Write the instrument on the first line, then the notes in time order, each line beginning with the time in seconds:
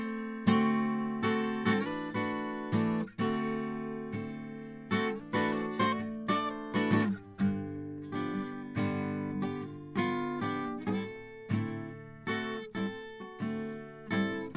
acoustic guitar
0.01 A3 C4
0.48 D3 A3 C4 F#4
1.24 D3 A3 C4 F#4 A4
1.67 D3 G#3 C4 F#4 A#4
1.82 E3 D4
2.15 A3 D4 F#4 B4
2.73 E3 A3 D4 F#4
3.20 D3 A3 C4 F#4 A4
3.42 A4
4.14 D3 A3 C4 F#4
4.92 D3 A3 C4 F#4 A4
5.17 E3 D4
5.34 E3 A3 D4 F#4 B4
5.52 C5
5.80 A3 D4 F#4 C5
5.93 D5
6.00 A3
6.29 A3 D4 F#4 D5
6.50 C5
6.75 E3 A3 D4 F#4 B4
6.92 B2 E3 A3 D4 F#4
7.40 G2 D3 B3
8.13 B3 D4 G4
8.17 F3
8.35 G3
8.77 G2 D3 G3 B3
9.43 B3 G4
9.66 F4
9.98 D3 B3 F4
10.42 B3 D4 G4
10.88 B3 E4 A4
11.06 A3
11.50 A2 D3 A3 C4
11.54 E4 A4
12.28 A3 C4 F#4 A4
12.76 G3 C4 E4 A4
12.93 A3
13.22 F#4
13.41 D3 A3 C4
14.12 G3 C4 E4 A4
14.32 D3